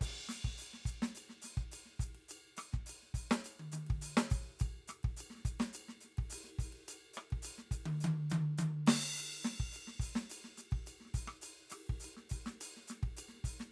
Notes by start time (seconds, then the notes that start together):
0.01 kick, hi-hat pedal, ride
0.29 snare, hi-hat pedal
0.44 kick, snare
0.58 hi-hat pedal
0.62 ride bell
0.73 snare
0.85 kick, hi-hat pedal
0.90 ride
1.02 snare, ride
1.15 hi-hat pedal, ride bell
1.29 snare
1.42 snare, hi-hat pedal, ride
1.57 kick, ride
1.72 hi-hat pedal, ride bell
1.85 snare
2.00 kick, hi-hat pedal, ride
2.15 ride
2.28 hi-hat pedal, ride bell
2.57 cross-stick, hi-hat pedal
2.73 kick, snare
2.86 hi-hat pedal, ride bell
3.02 snare
3.14 kick, hi-hat pedal, ride
3.30 snare, ride
3.44 hi-hat pedal, ride bell
3.60 high tom
3.72 hi-hat pedal, high tom, ride
3.87 kick, ride
4.01 hi-hat pedal, ride bell
4.17 snare
4.30 kick, hi-hat pedal, ride
4.45 ride
4.59 kick, hi-hat pedal, ride bell
4.88 cross-stick, hi-hat pedal, ride
5.03 kick, ride
5.17 hi-hat pedal, ride bell
5.30 snare
5.35 snare
5.38 snare
5.45 kick, hi-hat pedal, ride
5.60 snare, ride
5.73 hi-hat pedal, ride bell
5.88 snare
6.01 snare, hi-hat pedal, ride
6.17 kick, ride
6.30 hi-hat pedal, ride
6.44 snare
6.59 kick, hi-hat pedal, ride
6.73 ride
6.88 hi-hat pedal, ride bell
7.13 cross-stick, hi-hat pedal
7.17 ride bell
7.30 kick, ride
7.42 hi-hat pedal, ride bell
7.58 snare
7.71 kick, hi-hat pedal, ride
7.86 open hi-hat, high tom
8.00 hi-hat pedal, high tom
8.06 closed hi-hat
8.30 closed hi-hat, hi-hat pedal, high tom
8.58 closed hi-hat, hi-hat pedal, high tom
8.87 snare, hi-hat pedal, crash
9.16 hi-hat pedal
9.20 ride
9.43 snare, hi-hat pedal
9.60 kick
9.72 hi-hat pedal
9.76 ride bell
9.87 snare
10.00 kick, hi-hat pedal, ride
10.15 snare, ride
10.30 hi-hat pedal, ride bell
10.44 snare
10.57 snare, hi-hat pedal, ride
10.65 snare
10.71 kick, ride
10.86 hi-hat pedal, ride bell
11.00 snare
11.05 snare
11.14 kick, hi-hat pedal, ride
11.28 cross-stick, ride
11.41 hi-hat pedal, ride bell
11.70 cross-stick, hi-hat pedal, ride
11.87 kick, ride
11.92 snare
12.00 hi-hat pedal
12.04 ride bell
12.17 snare
12.29 kick, hi-hat pedal
12.33 ride
12.46 snare, ride
12.61 hi-hat pedal, ride bell
12.77 snare
12.88 snare, hi-hat pedal, ride
13.03 kick, ride
13.17 hi-hat pedal, ride bell
13.28 snare
13.33 snare
13.36 snare
13.44 kick, hi-hat pedal, ride
13.60 snare, ride